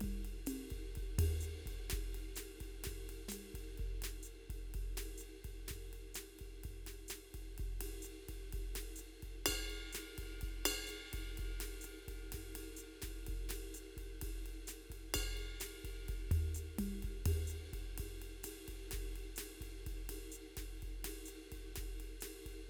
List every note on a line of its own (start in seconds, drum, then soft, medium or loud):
0.01 kick soft
0.01 mid tom medium
0.01 ride medium
0.10 kick soft
0.25 ride soft
0.47 hi-hat pedal medium
0.47 high tom medium
0.47 ride medium
0.71 kick soft
0.71 ride soft
0.77 kick soft
0.96 kick soft
0.96 ride soft
1.03 kick soft
1.19 floor tom loud
1.19 ride loud
1.41 hi-hat pedal medium
1.41 ride soft
1.64 kick soft
1.64 snare soft
1.64 ride soft
1.72 kick soft
1.90 kick soft
1.90 snare soft
1.90 ride medium
1.99 kick soft
2.15 ride soft
2.36 snare soft
2.36 hi-hat pedal medium
2.36 ride medium
2.61 kick soft
2.61 ride soft
2.84 kick soft
2.84 snare soft
2.84 ride medium
2.93 kick soft
3.10 ride soft
3.29 snare soft
3.29 hi-hat pedal medium
3.29 mid tom soft
3.29 ride medium
3.55 kick soft
3.55 ride soft
3.78 kick soft
3.78 ride soft
3.85 kick soft
4.02 snare soft
4.02 ride medium
4.23 hi-hat pedal medium
4.23 ride soft
4.50 kick soft
4.50 ride soft
4.55 kick soft
4.74 kick soft
4.74 ride soft
4.80 kick soft
4.97 snare soft
4.97 ride medium
5.18 hi-hat pedal medium
5.18 ride soft
5.45 kick soft
5.45 ride soft
5.50 kick soft
5.68 kick soft
5.68 snare soft
5.68 ride medium
5.76 kick soft
5.93 ride soft
6.15 snare soft
6.15 hi-hat pedal medium
6.15 ride medium
6.39 kick soft
6.39 ride soft
6.64 kick soft
6.64 ride soft
6.71 kick soft
6.87 snare soft
6.87 ride medium
7.09 snare soft
7.09 hi-hat pedal medium
7.09 ride medium
7.35 kick soft
7.35 ride soft
7.58 kick soft
7.58 ride soft
7.66 kick soft
7.81 snare soft
7.81 ride medium
8.03 hi-hat pedal medium
8.03 ride soft
8.29 kick soft
8.29 ride soft
8.53 kick soft
8.53 ride medium
8.59 kick soft
8.76 snare soft
8.76 ride medium
8.96 hi-hat pedal medium
8.96 ride soft
9.23 kick soft
9.23 ride soft
9.46 kick soft
9.46 ride bell loud
9.54 kick soft
9.70 ride soft
9.93 snare soft
9.93 hi-hat pedal medium
9.93 ride medium
10.18 kick soft
10.18 ride medium
10.24 kick soft
10.42 kick soft
10.42 ride medium
10.49 kick soft
10.66 ride bell loud
10.87 hi-hat pedal medium
10.87 ride soft
11.13 kick soft
11.13 ride medium
11.19 kick soft
11.38 kick soft
11.38 ride soft
11.45 kick soft
11.61 snare soft
11.61 ride medium
11.81 hi-hat pedal medium
11.81 ride medium
12.08 kick soft
12.08 ride soft
12.32 kick soft
12.32 snare soft
12.32 ride medium
12.40 kick soft
12.56 snare soft
12.56 ride medium
12.77 hi-hat pedal medium
12.77 ride soft
13.02 kick soft
13.02 snare soft
13.02 ride medium
13.09 kick soft
13.27 kick soft
13.27 ride soft
13.34 kick soft
13.49 snare soft
13.49 ride medium
13.75 hi-hat pedal medium
13.75 ride soft
13.97 kick soft
13.97 ride soft
14.22 kick soft
14.22 snare soft
14.22 ride medium
14.28 kick soft
14.46 ride soft
14.68 snare soft
14.68 hi-hat pedal medium
14.68 ride medium
14.91 kick soft
14.91 ride soft
15.14 kick soft
15.14 ride bell loud
15.22 kick soft
15.37 ride soft
15.61 snare soft
15.61 hi-hat pedal medium
15.61 ride medium
15.85 kick soft
15.85 ride soft
16.09 kick soft
16.09 ride soft
16.15 kick soft
16.31 floor tom loud
16.31 ride medium
16.55 hi-hat pedal medium
16.55 ride soft
16.79 kick soft
16.79 mid tom medium
16.79 ride medium
16.85 kick soft
17.03 kick soft
17.03 ride soft
17.10 kick soft
17.26 floor tom loud
17.26 ride medium
17.48 hi-hat pedal medium
17.48 ride soft
17.74 kick soft
17.74 ride soft
17.79 kick soft
17.98 kick soft
17.98 snare soft
17.98 ride medium
18.05 kick soft
18.22 ride soft
18.44 snare soft
18.44 hi-hat pedal medium
18.44 ride medium
18.68 kick soft
18.68 ride soft
18.91 kick soft
18.91 snare soft
18.91 ride medium
18.99 kick soft
19.16 ride soft
19.36 snare soft
19.36 hi-hat pedal medium
19.36 ride medium
19.61 kick soft
19.61 ride soft
19.87 kick soft
19.87 ride soft
19.93 kick soft
20.10 snare soft
20.10 ride medium
20.32 hi-hat pedal medium
20.32 ride soft
20.46 snare soft
20.57 kick soft
20.57 snare soft
20.57 ride medium
20.83 kick soft
20.83 ride soft
20.88 kick soft
21.04 snare soft
21.04 ride medium
21.26 hi-hat pedal medium
21.26 ride soft
21.52 kick soft
21.52 ride soft
21.76 kick soft
21.76 snare soft
21.76 ride medium
21.83 kick soft
22.00 ride soft
22.21 snare soft
22.21 hi-hat pedal medium
22.21 ride medium
22.46 kick soft
22.46 ride soft